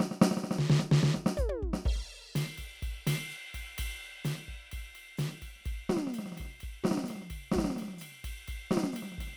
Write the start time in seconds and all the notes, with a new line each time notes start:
0.01 snare
0.12 snare
0.22 snare
0.32 snare
0.38 snare
0.44 snare
0.52 snare
0.56 snare
0.59 snare
0.71 snare
0.80 snare
0.92 snare, hi-hat pedal
1.04 snare
1.15 kick, snare, hi-hat pedal
1.27 snare
1.38 kick, hi-hat pedal, high tom
1.46 kick, high tom
1.63 kick
1.71 kick, snare
1.83 kick, hi-hat pedal, crash
1.92 kick
1.96 kick, snare
2.36 snare, hi-hat pedal, ride
2.58 kick, ride
2.64 kick
2.83 kick, ride
2.89 kick
3.08 snare, ride
3.31 hi-hat pedal
3.55 kick, ride
3.60 kick
3.78 kick, hi-hat pedal, ride
3.85 kick
4.03 ride
4.25 snare, hi-hat pedal, ride
4.36 snare
4.49 kick
4.54 kick
4.72 kick, hi-hat pedal, ride
4.79 kick
4.96 ride
5.18 snare, hi-hat pedal, ride
5.30 snare
5.43 kick, ride
5.57 snare
5.62 snare, hi-hat pedal
5.66 kick, ride
5.72 kick
5.90 snare, floor tom
5.98 snare
6.08 snare
6.14 hi-hat pedal, ride
6.19 snare
6.27 snare
6.33 snare
6.38 kick, snare, ride
6.42 snare
6.46 kick, snare
6.52 snare
6.55 snare
6.60 kick, snare, hi-hat pedal, ride
6.84 snare, floor tom
6.92 snare
6.98 snare
7.05 snare, hi-hat pedal
7.09 snare, ride bell
7.16 snare
7.22 snare
7.31 kick, ride
7.36 kick
7.52 kick, snare, floor tom, hi-hat pedal
7.59 snare
7.65 snare
7.71 snare
7.77 snare, ride bell
7.83 snare
7.89 snare
7.94 snare
7.98 snare, hi-hat pedal, ride
8.03 snare
8.13 snare
8.25 kick, ride
8.30 kick
8.46 kick, hi-hat pedal, ride
8.54 kick
8.72 snare, floor tom
8.78 snare
8.84 snare
8.93 snare, hi-hat pedal, ride
9.03 snare
9.13 snare
9.19 kick, snare, ride
9.24 kick, snare
9.34 snare